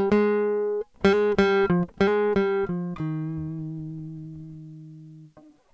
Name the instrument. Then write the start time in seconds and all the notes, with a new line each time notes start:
acoustic guitar
0.00 G3
0.13 G#3
1.06 G3
1.22 G#3
1.40 G3
1.71 F3
2.02 G3
2.15 G#3
2.38 G3
2.69 F3
2.98 D#3